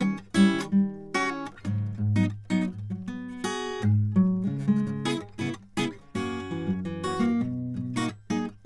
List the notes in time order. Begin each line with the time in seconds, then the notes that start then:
0.02 D#3 G3 C#4
0.35 G3 C#4 E4
0.55 D#3
0.73 G3
1.15 C#4 F#4
1.31 E4
1.66 G#2 C#3 F#3 D4
1.99 G#2
2.17 F#3 B3 D#4
2.51 F#3 B3 D#4
2.73 G#2
2.91 F#3
3.09 B3
3.45 F#4 G#4
3.84 G#2
4.17 F#3
4.48 C#3 G#3
4.69 G#3
4.88 C#3
5.06 B3 E4 G#4
5.40 C3 B3 E4
5.78 C#3 B3 E4 G#4
6.16 F#2 A#3 C#4 F#4
6.52 E3
6.68 F#2
6.86 E3
7.05 A#3 C#4 F#4
7.21 A#3
7.43 B2
7.75 F#2 B2
7.96 F#3 A#3 D#4 F#4
8.31 A#2 F#3 A#3 D#4 G#4